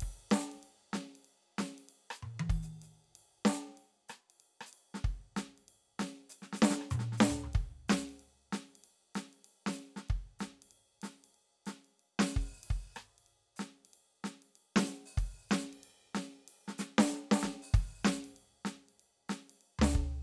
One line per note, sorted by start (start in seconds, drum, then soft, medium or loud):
0.01 kick soft
0.01 ride medium
0.09 hi-hat pedal soft
0.31 snare loud
0.31 hi-hat pedal medium
0.31 ride soft
0.52 ride soft
0.63 ride soft
0.94 snare medium
0.94 hi-hat pedal soft
0.94 ride soft
1.16 ride soft
1.25 ride soft
1.59 snare medium
1.59 hi-hat pedal medium
1.59 ride soft
1.79 ride soft
1.89 ride soft
2.11 cross-stick medium
2.11 hi-hat pedal soft
2.23 mid tom medium
2.40 high tom medium
2.50 kick medium
2.50 crash soft
2.63 hi-hat pedal soft
2.82 hi-hat pedal soft
2.82 ride soft
3.05 ride soft
3.16 ride soft
3.46 snare loud
3.46 hi-hat pedal soft
3.78 ride soft
4.09 cross-stick medium
4.09 hi-hat pedal medium
4.31 ride soft
4.61 cross-stick medium
4.67 hi-hat pedal medium
4.73 ride soft
4.95 snare medium
5.05 kick medium
5.05 ride soft
5.37 snare medium
5.37 hi-hat pedal medium
5.37 ride soft
5.58 ride soft
5.69 ride soft
6.00 snare medium
6.00 hi-hat pedal medium
6.00 ride soft
6.30 hi-hat pedal medium
6.30 ride soft
6.43 snare soft
6.53 snare medium
6.53 hi-hat pedal medium
6.63 snare loud
6.71 snare medium
6.82 cross-stick medium
6.91 hi-hat pedal medium
6.91 mid tom loud
7.00 snare soft
7.13 snare soft
7.18 snare loud
7.18 hi-hat pedal medium
7.30 floor tom medium
7.44 floor tom soft
7.54 kick medium
7.54 ride soft
7.89 snare loud
7.89 hi-hat pedal medium
7.89 ride medium
8.10 ride soft
8.20 ride soft
8.53 snare medium
8.53 hi-hat pedal soft
8.53 ride soft
8.76 ride soft
8.84 ride soft
9.15 snare medium
9.15 hi-hat pedal medium
9.15 ride soft
9.33 ride soft
9.45 ride soft
9.67 snare medium
9.73 hi-hat pedal medium
9.79 ride soft
9.97 snare soft
10.09 kick medium
10.09 ride soft
10.40 snare medium
10.40 hi-hat pedal soft
10.44 ride soft
10.63 ride soft
10.71 ride soft
11.02 snare medium
11.02 hi-hat pedal medium
11.02 ride soft
11.24 ride soft
11.35 ride soft
11.66 snare medium
11.66 hi-hat pedal medium
11.66 ride soft
11.85 ride soft
12.00 ride soft
12.20 open hi-hat medium
12.20 snare loud
12.37 kick medium
12.64 ride medium
12.71 kick medium
12.96 cross-stick medium
12.96 hi-hat pedal soft
12.96 ride soft
13.19 ride soft
13.27 ride soft
13.57 snare medium
13.57 hi-hat pedal soft
13.61 ride soft
13.86 ride soft
13.94 ride soft
14.24 snare medium
14.24 hi-hat pedal soft
14.24 ride soft
14.43 ride soft
14.56 ride soft
14.76 snare loud
14.88 ride soft
15.06 open hi-hat medium
15.18 kick medium
15.18 ride medium
15.50 snare loud
15.50 hi-hat pedal soft
15.50 ride soft
15.73 ride soft
15.84 ride soft
16.15 snare medium
16.15 hi-hat pedal medium
16.15 ride soft
16.48 ride medium
16.68 snare medium
16.79 snare medium
16.79 hi-hat pedal medium
16.99 snare loud
17.13 snare soft
17.13 hi-hat pedal soft
17.32 snare loud
17.39 hi-hat pedal soft
17.43 kick soft
17.43 snare medium
17.63 open hi-hat medium
17.74 kick loud
17.74 ride medium
18.04 snare loud
18.04 hi-hat pedal soft
18.04 ride soft
18.25 ride soft
18.37 ride soft
18.65 snare medium
18.65 hi-hat pedal soft
18.65 ride soft
18.89 ride soft
19.00 ride soft
19.29 snare medium
19.29 hi-hat pedal soft
19.29 ride soft
19.50 ride soft
19.61 ride soft
19.79 snare loud
19.79 floor tom loud
19.84 hi-hat pedal medium
19.95 kick medium